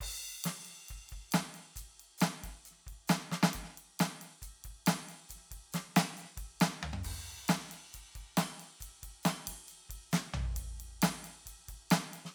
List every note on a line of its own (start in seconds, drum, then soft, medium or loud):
0.00 kick soft
0.00 crash medium
0.07 kick soft
0.10 kick soft
0.44 snare loud
0.44 hi-hat pedal soft
0.44 ride loud
0.65 ride soft
0.76 snare soft
0.88 kick soft
0.88 hi-hat pedal soft
0.88 ride medium
1.09 kick soft
1.09 ride soft
1.31 snare loud
1.31 hi-hat pedal medium
1.31 ride loud
1.54 ride soft
1.70 snare soft
1.76 kick soft
1.76 hi-hat pedal medium
1.76 ride medium
1.81 kick soft
1.99 ride soft
2.18 snare loud
2.18 hi-hat pedal medium
2.18 ride medium
2.43 kick soft
2.43 ride medium
2.49 kick soft
2.65 hi-hat pedal medium
2.65 ride soft
2.71 snare soft
2.76 snare soft
2.80 snare soft
2.86 kick soft
2.86 ride soft
2.92 kick soft
3.07 snare loud
3.07 hi-hat pedal medium
3.07 ride medium
3.31 snare medium
3.43 snare loud
3.53 kick soft
3.53 hi-hat pedal soft
3.53 ride medium
3.60 kick soft
3.60 snare soft
3.67 snare soft
3.73 snare soft
3.77 ride medium
3.99 snare loud
3.99 hi-hat pedal medium
3.99 ride medium
4.21 ride medium
4.29 snare soft
4.36 snare soft
4.42 kick soft
4.42 hi-hat pedal medium
4.42 ride medium
4.55 snare soft
4.64 kick soft
4.64 ride medium
4.70 kick soft
4.86 snare loud
4.86 hi-hat pedal medium
4.86 ride loud
5.09 ride soft
5.22 snare soft
5.29 kick soft
5.29 hi-hat pedal medium
5.29 ride medium
5.35 snare soft
5.40 snare soft
5.44 snare soft
5.47 kick soft
5.47 snare soft
5.52 ride medium
5.56 kick soft
5.72 snare loud
5.72 hi-hat pedal medium
5.72 ride medium
5.96 snare loud
5.96 ride loud
6.17 hi-hat pedal medium
6.17 ride soft
6.24 snare soft
6.30 snare soft
6.35 kick soft
6.35 snare soft
6.35 ride medium
6.43 kick soft
6.60 snare loud
6.60 hi-hat pedal medium
6.60 ride medium
6.83 mid tom loud
6.93 high tom loud
7.03 kick soft
7.03 hi-hat pedal soft
7.03 crash medium
7.10 kick soft
7.25 ride soft
7.48 snare loud
7.48 hi-hat pedal medium
7.48 ride medium
7.71 ride medium
7.83 snare soft
7.93 kick soft
7.93 hi-hat pedal soft
7.93 ride medium
8.15 kick soft
8.15 ride soft
8.37 snare loud
8.37 hi-hat pedal soft
8.37 ride loud
8.59 ride soft
8.80 kick soft
8.80 hi-hat pedal soft
8.80 ride medium
8.85 kick soft
9.03 kick soft
9.03 ride medium
9.23 snare loud
9.23 hi-hat pedal medium
9.23 ride loud
9.47 kick soft
9.47 ride loud
9.67 hi-hat pedal soft
9.67 ride soft
9.71 snare soft
9.76 snare soft
9.79 snare soft
9.82 snare soft
9.85 snare soft
9.89 kick soft
9.89 ride medium
10.11 snare loud
10.11 hi-hat pedal soft
10.11 ride medium
10.34 floor tom loud
10.55 kick soft
10.55 hi-hat pedal soft
10.55 ride medium
10.80 ride medium
11.02 snare loud
11.02 hi-hat pedal soft
11.02 ride loud
11.24 ride medium
11.46 kick soft
11.46 hi-hat pedal soft
11.46 ride medium
11.59 snare soft
11.68 kick soft
11.68 ride medium
11.74 kick soft
11.90 snare loud
11.90 hi-hat pedal soft
11.90 ride medium
12.13 ride medium
12.25 snare medium